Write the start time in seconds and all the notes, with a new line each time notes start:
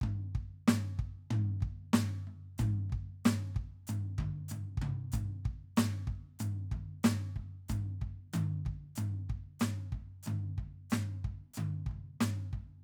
0.01 kick, floor tom
0.35 kick, floor tom
0.68 snare, floor tom
0.98 kick, floor tom
1.31 floor tom
1.60 kick, floor tom
1.93 snare, floor tom
2.27 floor tom
2.58 kick, floor tom, hi-hat pedal
2.90 kick, floor tom
3.25 snare, floor tom, hi-hat pedal
3.54 kick, floor tom
3.87 floor tom, hi-hat pedal
4.18 kick, floor tom, high tom
4.48 floor tom, hi-hat pedal
4.53 mid tom
4.77 kick
4.81 floor tom, mid tom
5.12 kick, floor tom, hi-hat pedal
5.45 kick, floor tom
5.76 snare, floor tom, hi-hat pedal
6.07 kick, floor tom
6.39 floor tom, hi-hat pedal
6.71 kick, floor tom, high tom
7.03 snare, floor tom, hi-hat pedal
7.36 kick, floor tom
7.68 kick, floor tom, hi-hat pedal
8.01 kick, floor tom
8.33 floor tom, hi-hat pedal, high tom
8.65 kick, floor tom
8.95 floor tom, hi-hat pedal
9.29 kick, floor tom
9.59 snare, floor tom, hi-hat pedal
9.92 kick, floor tom
10.23 hi-hat pedal, high tom
10.27 floor tom
10.58 kick, floor tom
10.90 snare, floor tom, hi-hat pedal
11.24 kick, floor tom
11.53 floor tom, hi-hat pedal
11.58 high tom
11.86 kick, mid tom
11.91 floor tom
12.20 snare, floor tom, hi-hat pedal
12.53 kick, floor tom